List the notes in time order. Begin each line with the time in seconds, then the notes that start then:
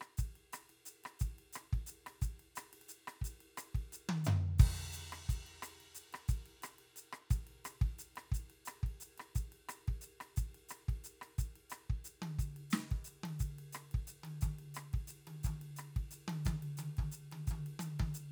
0.01 cross-stick
0.17 kick, hi-hat pedal, ride
0.36 ride
0.53 cross-stick, hi-hat pedal, ride
0.69 ride
0.85 hi-hat pedal, ride
1.04 cross-stick, ride
1.19 kick, hi-hat pedal, ride
1.39 ride
1.53 cross-stick, hi-hat pedal, ride
1.73 kick, ride
1.86 hi-hat pedal, ride
2.06 cross-stick, ride
2.22 kick, hi-hat pedal, ride
2.40 ride
2.56 cross-stick, hi-hat pedal, ride
2.73 ride
2.81 ride
2.89 hi-hat pedal, ride
3.08 cross-stick, ride
3.22 kick, hi-hat pedal, ride
3.41 ride
3.57 cross-stick, hi-hat pedal, ride
3.75 kick, ride
3.92 hi-hat pedal, ride
4.09 high tom
4.24 floor tom, hi-hat pedal
4.59 kick, hi-hat pedal, ride, crash
4.77 ride
4.93 hi-hat pedal, ride
5.12 cross-stick, ride
5.29 kick, hi-hat pedal, ride
5.47 ride
5.63 cross-stick, hi-hat pedal, ride
5.80 ride
5.95 hi-hat pedal, ride
6.13 cross-stick, ride
6.28 kick, hi-hat pedal, ride
6.46 ride
6.63 cross-stick, hi-hat pedal, ride
6.79 ride
6.96 hi-hat pedal, ride
7.13 cross-stick
7.30 kick, hi-hat pedal, ride
7.47 ride
7.65 cross-stick, hi-hat pedal, ride
7.81 kick, ride
7.99 hi-hat pedal, ride
8.16 cross-stick, ride
8.32 kick, hi-hat pedal, ride
8.50 ride
8.65 cross-stick, hi-hat pedal, ride
8.83 kick, ride
9.00 hi-hat pedal, ride
9.18 cross-stick, ride
9.35 kick, hi-hat pedal, ride
9.52 ride
9.69 cross-stick, hi-hat pedal, ride
9.88 kick, ride
10.01 hi-hat pedal, ride
10.20 cross-stick, ride
10.36 kick, hi-hat pedal, ride
10.55 ride
10.69 cross-stick, hi-hat pedal, ride
10.88 kick, ride
11.04 hi-hat pedal, ride
11.22 cross-stick, ride
11.38 kick, hi-hat pedal, ride
11.56 ride
11.70 cross-stick, hi-hat pedal, ride
11.90 kick
12.04 hi-hat pedal, ride
12.22 high tom, ride
12.39 kick, hi-hat pedal, ride
12.56 ride
12.70 snare, hi-hat pedal
12.91 kick, ride
13.04 hi-hat pedal, ride
13.24 high tom, ride
13.39 kick, hi-hat pedal, ride
13.59 ride
13.73 cross-stick, hi-hat pedal, ride
13.91 kick, ride
14.07 hi-hat pedal, ride
14.24 high tom, ride
14.41 kick, hi-hat pedal, high tom, ride
14.59 ride
14.74 cross-stick, hi-hat pedal, ride
14.93 kick, ride
15.07 hi-hat pedal, ride
15.27 high tom, ride
15.43 kick, hi-hat pedal, high tom, ride
15.62 ride
15.76 cross-stick, hi-hat pedal, ride
15.96 kick, ride
16.11 hi-hat pedal, ride
16.28 high tom, ride
16.45 kick, hi-hat pedal, high tom, ride
16.63 ride
16.77 hi-hat pedal, high tom, ride
16.97 kick, high tom, ride
17.12 hi-hat pedal, ride
17.32 high tom, ride
17.47 kick, hi-hat pedal, high tom, ride
17.66 ride
17.79 hi-hat pedal, high tom, ride
17.99 kick, high tom, ride
18.14 hi-hat pedal, ride